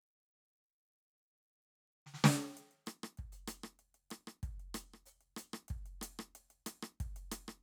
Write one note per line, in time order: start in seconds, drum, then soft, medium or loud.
2.06 snare soft
2.14 snare soft
2.17 snare soft
2.24 snare loud
2.57 closed hi-hat soft
2.71 closed hi-hat soft
2.86 closed hi-hat soft
2.86 cross-stick medium
3.03 cross-stick medium
3.17 kick soft
3.17 closed hi-hat soft
3.32 closed hi-hat soft
3.47 closed hi-hat medium
3.47 cross-stick medium
3.63 cross-stick medium
3.79 closed hi-hat soft
3.94 closed hi-hat soft
4.10 cross-stick medium
4.10 closed hi-hat soft
4.27 cross-stick soft
4.43 kick medium
4.43 closed hi-hat soft
4.59 closed hi-hat soft
4.74 closed hi-hat medium
4.74 cross-stick medium
4.93 cross-stick soft
5.06 hi-hat pedal soft
5.06 open hi-hat soft
5.21 closed hi-hat soft
5.36 closed hi-hat medium
5.36 cross-stick medium
5.53 cross-stick medium
5.68 kick medium
5.68 closed hi-hat soft
5.86 closed hi-hat soft
6.01 cross-stick medium
6.01 closed hi-hat medium
6.19 cross-stick medium
6.35 closed hi-hat soft
6.50 closed hi-hat soft
6.66 cross-stick medium
6.66 closed hi-hat medium
6.82 cross-stick medium
7.00 kick medium
7.00 closed hi-hat soft
7.16 closed hi-hat soft
7.32 cross-stick medium
7.32 closed hi-hat medium
7.48 cross-stick medium